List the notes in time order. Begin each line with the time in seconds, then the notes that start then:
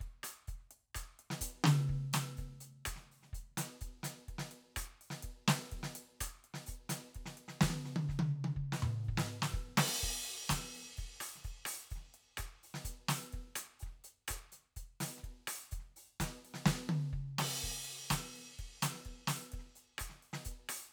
0.01 kick, closed hi-hat
0.24 open hi-hat, cross-stick
0.48 closed hi-hat, kick
0.60 snare
0.71 closed hi-hat
0.95 closed hi-hat, kick, cross-stick
1.20 open hi-hat
1.31 snare
1.42 closed hi-hat, kick
1.51 crash
1.64 snare, high tom
1.89 kick
2.14 closed hi-hat, snare
2.37 open hi-hat, kick
2.44 snare
2.61 closed hi-hat
2.86 closed hi-hat, kick, cross-stick
2.96 snare
3.12 open hi-hat
3.23 snare
3.33 closed hi-hat, kick
3.58 open hi-hat, snare
3.81 closed hi-hat, kick
4.04 closed hi-hat, snare
4.29 kick, closed hi-hat
4.39 snare
4.52 open hi-hat
4.77 open hi-hat, kick, cross-stick
5.02 open hi-hat
5.11 snare
5.23 kick, closed hi-hat
5.48 snare
5.72 kick, closed hi-hat
5.83 snare
5.96 open hi-hat
6.21 closed hi-hat, kick, cross-stick
6.45 closed hi-hat
6.54 snare
6.67 open hi-hat, kick
6.90 closed hi-hat, snare
7.04 snare
7.15 kick, closed hi-hat
7.26 snare
7.38 open hi-hat
7.49 snare
7.61 kick, snare
7.71 high tom
7.85 snare
7.96 high tom
8.09 kick, snare
8.20 high tom
8.45 high tom
8.57 kick
8.73 snare
8.83 mid tom
9.04 hi-hat pedal
9.09 kick
9.18 snare
9.42 snare
9.53 kick, hi-hat pedal
9.78 snare, crash
9.87 snare
10.02 closed hi-hat, kick
10.25 open hi-hat
10.50 closed hi-hat, kick, snare
10.61 snare
10.75 open hi-hat
10.83 snare
10.87 snare
10.91 snare
10.98 kick, open hi-hat
11.21 open hi-hat, cross-stick
11.36 snare
11.44 open hi-hat, kick
11.66 open hi-hat, cross-stick
11.91 open hi-hat, kick
11.96 snare
12.00 snare
12.04 snare
12.14 open hi-hat
12.38 open hi-hat, kick, cross-stick
12.64 open hi-hat
12.75 snare
12.85 closed hi-hat, kick
13.09 open hi-hat, snare
13.33 kick, closed hi-hat
13.56 open hi-hat, cross-stick
13.80 open hi-hat, kick
13.86 snare
13.91 snare
13.94 snare
14.04 closed hi-hat
14.28 open hi-hat, kick, cross-stick
14.42 snare
14.52 closed hi-hat, snare
14.57 snare
14.77 closed hi-hat, kick
15.01 open hi-hat, snare
15.18 snare
15.24 kick, closed hi-hat
15.48 open hi-hat, cross-stick
15.72 closed hi-hat, kick
15.80 snare
15.85 snare
15.89 snare
15.93 open hi-hat, snare
16.20 closed hi-hat, kick, snare
16.45 open hi-hat
16.54 snare
16.66 kick, snare
16.90 high tom
17.13 kick
17.39 snare, crash
17.64 kick
17.85 open hi-hat
18.11 open hi-hat, kick, snare
18.24 snare
18.36 snare, open hi-hat
18.41 snare
18.45 snare
18.59 kick, closed hi-hat
18.83 open hi-hat, snare
18.95 snare
19.05 kick, closed hi-hat
19.28 open hi-hat, snare
19.52 kick, closed hi-hat
19.59 snare
19.64 snare
19.71 snare
19.76 open hi-hat
19.99 open hi-hat, kick, cross-stick
20.10 snare
20.23 open hi-hat
20.34 snare
20.45 closed hi-hat, kick
20.69 open hi-hat, cross-stick